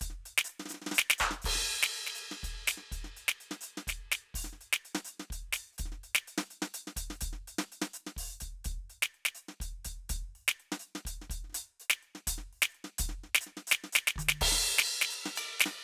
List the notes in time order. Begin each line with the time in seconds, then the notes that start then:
0.01 closed hi-hat, kick
0.10 snare
0.25 closed hi-hat
0.38 snare
0.44 hi-hat pedal
0.49 closed hi-hat
0.60 snare
0.66 snare, hi-hat pedal
0.70 snare
0.74 snare
0.82 snare
0.86 snare
0.91 snare, hi-hat pedal
0.98 snare
1.10 snare
1.18 kick, percussion, hi-hat pedal
1.31 snare
1.42 kick, hi-hat pedal, crash
1.50 kick
1.55 snare
1.62 snare
1.71 closed hi-hat
1.83 snare
1.95 closed hi-hat
2.07 snare
2.15 closed hi-hat, hi-hat pedal
2.31 snare
2.43 closed hi-hat, kick
2.67 closed hi-hat, snare
2.77 snare
2.92 closed hi-hat, kick
3.04 snare
3.17 closed hi-hat
3.28 snare
3.40 closed hi-hat
3.51 snare
3.61 closed hi-hat, hi-hat pedal
3.77 snare
3.87 closed hi-hat, kick, snare
4.12 closed hi-hat, snare
4.34 open hi-hat, kick
4.44 snare
4.53 snare
4.61 closed hi-hat
4.73 snare
4.85 closed hi-hat
4.95 snare
5.05 closed hi-hat, hi-hat pedal
5.20 snare
5.30 closed hi-hat, kick
5.53 open hi-hat, snare
5.73 hi-hat pedal
5.78 closed hi-hat, kick
5.85 snare
5.92 snare
6.03 closed hi-hat
6.15 snare
6.27 closed hi-hat
6.38 snare
6.44 hi-hat pedal
6.50 closed hi-hat
6.62 snare
6.74 closed hi-hat
6.87 snare
6.96 open hi-hat, kick
7.10 snare, hi-hat pedal
7.21 closed hi-hat, kick
7.33 snare
7.47 closed hi-hat
7.58 snare
7.72 closed hi-hat
7.82 snare
7.93 hi-hat pedal
8.06 snare
8.17 open hi-hat, kick
8.40 closed hi-hat, kick
8.64 closed hi-hat, kick
8.71 kick
8.74 kick
8.90 closed hi-hat
9.02 snare
9.14 closed hi-hat
9.25 snare
9.35 closed hi-hat, hi-hat pedal
9.48 snare
9.60 closed hi-hat, kick
9.85 closed hi-hat, kick
10.09 closed hi-hat, kick, snare
10.16 kick
10.35 open hi-hat
10.48 snare, hi-hat pedal
10.60 closed hi-hat
10.72 snare
10.79 closed hi-hat, hi-hat pedal
10.95 snare
11.05 closed hi-hat, kick
11.21 snare
11.30 closed hi-hat, kick
11.44 snare
11.50 snare
11.53 open hi-hat, snare
11.55 snare
11.80 open hi-hat, hi-hat pedal
11.90 snare
12.03 closed hi-hat
12.15 snare
12.27 closed hi-hat, kick
12.38 snare
12.53 open hi-hat
12.62 snare
12.69 hi-hat pedal
12.75 closed hi-hat
12.84 snare
12.98 closed hi-hat, kick
13.06 kick
13.09 kick, snare
13.24 snare
13.35 snare
13.41 hi-hat pedal
13.47 snare
13.57 snare
13.67 hi-hat pedal
13.71 snare
13.84 snare
13.93 snare, hi-hat pedal
14.07 snare
14.16 kick, hi-hat pedal, high tom
14.29 snare
14.41 kick, crash
14.48 kick, snare
14.59 hi-hat pedal
14.66 ride
14.79 snare
14.86 hi-hat pedal
15.01 snare
15.10 hi-hat pedal, ride
15.26 snare
15.36 hi-hat pedal, ride bell
15.60 snare, ride
15.66 snare